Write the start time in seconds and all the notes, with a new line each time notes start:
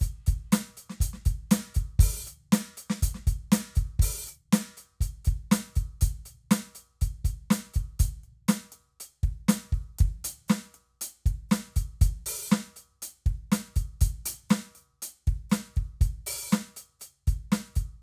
0.01 closed hi-hat, kick, hi-hat pedal
0.27 closed hi-hat, kick
0.53 closed hi-hat, snare
0.78 closed hi-hat
0.91 snare
1.01 closed hi-hat, kick
1.14 snare
1.26 closed hi-hat, kick
1.52 closed hi-hat, snare
1.75 closed hi-hat, kick
2.00 open hi-hat, kick
2.27 closed hi-hat, hi-hat pedal
2.53 closed hi-hat, snare
2.77 closed hi-hat, hi-hat pedal
2.91 snare
3.03 closed hi-hat, kick
3.15 snare
3.28 closed hi-hat, kick
3.53 closed hi-hat, snare
3.76 closed hi-hat, kick
4.00 open hi-hat, kick
4.27 open hi-hat, hi-hat pedal
4.54 closed hi-hat, snare
4.78 closed hi-hat
5.02 closed hi-hat, kick
5.26 closed hi-hat, kick
5.52 closed hi-hat, snare
5.76 closed hi-hat, kick
6.02 closed hi-hat, kick
6.26 closed hi-hat
6.52 closed hi-hat, snare
6.76 closed hi-hat
7.02 closed hi-hat, kick
7.25 closed hi-hat, kick
7.51 closed hi-hat, snare
7.75 closed hi-hat, kick
8.00 closed hi-hat, kick
8.24 closed hi-hat
8.49 closed hi-hat, snare
8.73 closed hi-hat
9.01 closed hi-hat
9.24 kick, closed hi-hat
9.49 closed hi-hat, snare
9.73 kick, closed hi-hat
9.99 kick, closed hi-hat
10.25 open hi-hat
10.49 snare, hi-hat pedal
10.75 closed hi-hat
11.02 closed hi-hat
11.27 kick, closed hi-hat
11.50 closed hi-hat, snare, hi-hat pedal
11.77 closed hi-hat, kick
12.02 closed hi-hat, kick
12.27 open hi-hat
12.50 snare, hi-hat pedal
12.77 closed hi-hat
13.03 closed hi-hat
13.27 kick, closed hi-hat
13.53 closed hi-hat, snare
13.77 closed hi-hat, kick
14.02 closed hi-hat, kick
14.26 closed hi-hat
14.51 snare, hi-hat pedal
14.76 hi-hat pedal, open hi-hat
15.03 closed hi-hat
15.28 kick, closed hi-hat
15.50 closed hi-hat, snare, hi-hat pedal
15.77 kick, closed hi-hat
16.02 closed hi-hat, kick
16.27 open hi-hat
16.52 snare, hi-hat pedal
16.77 closed hi-hat
17.01 closed hi-hat, hi-hat pedal
17.28 closed hi-hat, kick
17.53 closed hi-hat, snare
17.76 closed hi-hat, kick